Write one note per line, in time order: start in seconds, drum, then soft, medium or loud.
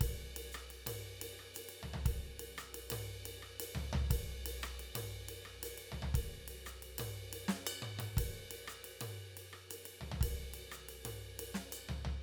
0.01 kick medium
0.01 ride loud
0.37 ride loud
0.52 cross-stick medium
0.52 hi-hat pedal medium
0.71 ride medium
0.87 mid tom medium
0.87 ride loud
1.22 ride loud
1.39 cross-stick soft
1.54 hi-hat pedal medium
1.54 ride loud
1.69 ride medium
1.83 kick soft
1.83 floor tom medium
1.94 floor tom medium
2.06 kick medium
2.06 ride loud
2.40 ride loud
2.58 cross-stick medium
2.58 hi-hat pedal medium
2.75 ride loud
2.91 mid tom loud
2.91 ride loud
3.26 ride loud
3.43 cross-stick soft
3.60 hi-hat pedal medium
3.60 ride loud
3.75 floor tom medium
3.93 floor tom loud
4.11 kick medium
4.11 ride loud
4.46 ride loud
4.62 cross-stick medium
4.62 hi-hat pedal medium
4.80 ride medium
4.96 mid tom medium
4.96 ride loud
5.29 ride medium
5.45 cross-stick soft
5.63 hi-hat pedal medium
5.63 ride loud
5.78 ride medium
5.92 floor tom medium
6.03 floor tom medium
6.14 kick medium
6.14 ride loud
6.48 ride medium
6.66 cross-stick medium
6.66 hi-hat pedal medium
6.83 ride medium
6.99 mid tom loud
6.99 ride loud
7.33 ride loud
7.49 snare medium
7.67 hi-hat pedal medium
7.67 ride bell loud
7.82 mid tom medium
7.99 mid tom loud
7.99 ride medium
8.17 kick medium
8.17 ride loud
8.51 ride loud
8.68 cross-stick medium
8.68 hi-hat pedal medium
8.85 ride medium
9.01 mid tom medium
9.01 ride loud
9.37 ride medium
9.53 cross-stick medium
9.71 hi-hat pedal medium
9.71 ride loud
9.86 ride medium
10.01 floor tom medium
10.12 floor tom medium
10.21 kick medium
10.21 ride loud
10.54 ride medium
10.72 cross-stick medium
10.72 hi-hat pedal medium
10.89 ride medium
11.05 mid tom medium
11.05 ride loud
11.40 ride loud
11.55 snare medium
11.73 hi-hat pedal medium
11.73 ride bell medium
11.89 floor tom medium
12.05 floor tom medium